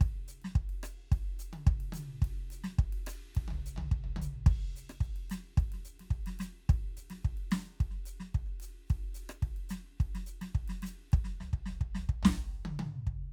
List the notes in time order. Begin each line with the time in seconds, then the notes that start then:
0.01 kick, ride
0.28 kick, hi-hat pedal, ride
0.42 snare, ride
0.56 kick
0.70 ride
0.83 kick, cross-stick, hi-hat pedal, ride
1.12 kick, ride
1.39 hi-hat pedal, ride
1.53 high tom, ride
1.67 kick
1.80 ride
1.93 hi-hat pedal, high tom, ride
2.22 kick, ride
2.51 hi-hat pedal, ride
2.64 snare, ride
2.79 kick
2.93 ride
3.07 cross-stick, hi-hat pedal, ride
3.35 kick, ride
3.48 floor tom, high tom
3.66 hi-hat pedal
3.77 floor tom, high tom
3.92 kick
4.04 floor tom
4.16 floor tom, high tom
4.22 hi-hat pedal
4.46 kick, hi-hat pedal, ride
4.76 hi-hat pedal, ride
4.90 cross-stick, ride
5.01 kick, hi-hat pedal
5.16 ride
5.30 snare, hi-hat pedal, ride
5.58 kick, ride
5.72 snare, ride
5.85 hi-hat pedal
6.00 snare, ride
6.11 kick, hi-hat pedal
6.26 snare, ride
6.39 snare, hi-hat pedal, ride
6.69 kick, ride
6.84 snare
6.97 kick, hi-hat pedal, ride
7.10 snare, ride
7.23 kick, hi-hat pedal
7.37 ride
7.51 snare, hi-hat pedal, ride
7.66 snare
7.80 kick, ride
7.91 snare
8.06 hi-hat pedal, ride
8.20 snare
8.35 kick, ride
8.46 cross-stick
8.60 hi-hat pedal, ride
8.87 kick, hi-hat pedal, ride
9.01 snare
9.15 hi-hat pedal, ride
9.29 cross-stick
9.42 kick, ride
9.57 ride
9.69 snare, hi-hat pedal, ride
9.86 snare
10.00 kick, ride
10.15 snare, ride
10.27 hi-hat pedal
10.42 snare, ride
10.55 kick
10.68 snare, ride
10.83 snare, hi-hat pedal, ride
11.12 kick, ride
11.25 snare
11.41 snare, floor tom
11.53 kick
11.66 snare, floor tom
11.81 kick
11.95 snare, floor tom
12.09 kick
12.23 snare, floor tom
12.65 high tom
12.79 high tom
13.07 kick